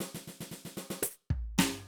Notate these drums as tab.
SD |oooooooo----o---|
T1 |--------o-------|
FT |------------o---|
BD |----------o-----|